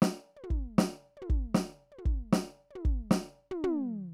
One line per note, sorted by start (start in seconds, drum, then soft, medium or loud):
0.02 snare loud
0.36 high tom soft
0.43 floor tom medium
0.50 kick soft
0.78 snare loud
1.16 high tom soft
1.21 floor tom medium
1.30 kick medium
1.55 snare loud
1.91 high tom soft
1.98 floor tom soft
2.05 kick medium
2.33 snare loud
2.70 high tom soft
2.75 floor tom medium
2.85 kick medium
3.11 snare loud
3.50 floor tom medium
3.63 floor tom loud